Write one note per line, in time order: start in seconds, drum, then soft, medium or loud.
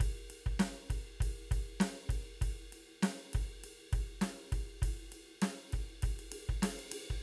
0.01 kick medium
0.01 ride medium
0.31 ride medium
0.47 kick medium
0.60 snare loud
0.60 ride medium
0.91 kick medium
0.91 ride medium
1.21 kick medium
1.21 ride medium
1.52 kick medium
1.52 ride medium
1.81 snare loud
1.81 ride medium
2.10 kick medium
2.10 ride medium
2.42 kick medium
2.42 ride medium
2.73 ride medium
3.04 snare loud
3.04 ride medium
3.34 kick medium
3.34 ride medium
3.65 ride medium
3.94 kick medium
3.94 ride medium
4.22 snare medium
4.22 ride medium
4.53 kick medium
4.53 ride medium
4.83 kick medium
4.83 ride medium
5.13 ride medium
5.43 snare medium
5.43 ride medium
5.74 kick medium
5.74 ride medium
6.03 kick medium
6.03 ride medium
6.20 ride medium
6.33 ride medium
6.50 kick medium
6.63 snare medium
6.63 ride loud
6.80 ride medium
6.92 ride loud
7.11 kick soft